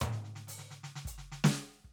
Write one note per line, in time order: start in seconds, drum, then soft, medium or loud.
0.00 hi-hat pedal medium
0.00 high tom loud
0.12 snare soft
0.24 snare soft
0.35 snare soft
0.47 snare soft
0.47 hi-hat pedal medium
0.58 snare soft
0.70 snare soft
0.83 snare medium
0.96 snare medium
1.05 open hi-hat medium
1.05 kick medium
1.18 snare soft
1.32 snare medium
1.44 snare loud
1.56 snare soft
1.84 kick soft